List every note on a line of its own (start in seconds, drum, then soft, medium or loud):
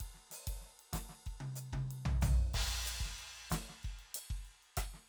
0.01 kick soft
0.01 ride medium
0.15 snare soft
0.31 snare soft
0.31 hi-hat pedal medium
0.31 ride medium
0.48 kick soft
0.48 ride loud
0.62 snare soft
0.80 ride soft
0.94 kick soft
0.94 snare medium
0.94 hi-hat pedal medium
0.94 ride loud
1.10 snare soft
1.27 kick soft
1.27 ride soft
1.41 high tom medium
1.56 hi-hat pedal medium
1.56 ride soft
1.73 kick soft
1.73 closed hi-hat soft
1.73 high tom loud
1.91 ride medium
2.06 floor tom loud
2.22 kick soft
2.22 floor tom loud
2.22 hi-hat pedal medium
2.54 kick medium
2.54 crash loud
2.54 ride loud
2.86 hi-hat pedal medium
2.86 ride bell medium
3.01 kick soft
3.06 snare soft
3.19 ride soft
3.36 ride soft
3.51 kick soft
3.51 snare medium
3.51 hi-hat pedal medium
3.51 ride bell medium
3.70 snare soft
3.84 kick soft
3.84 ride soft
3.99 ride soft
4.15 hi-hat pedal medium
4.15 ride bell medium
4.31 kick soft
4.31 snare soft
4.46 ride soft
4.63 ride soft
4.78 kick medium
4.78 cross-stick medium
4.78 hi-hat pedal medium
4.78 ride bell medium
4.94 snare soft